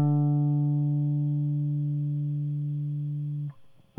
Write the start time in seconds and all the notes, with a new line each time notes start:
0.00 D3